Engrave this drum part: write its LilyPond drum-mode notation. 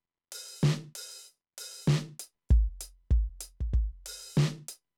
\new DrumStaff \drummode { \time 4/4 \tempo 4 = 96 r8 hho8 <hhp sn>8 hho8 hhp8 hho8 <hhp sn>8 hh8 | <hhp bd>8 hh8 bd8 hh16 bd16 bd8 hho8 <hhp sn>8 hh8 | }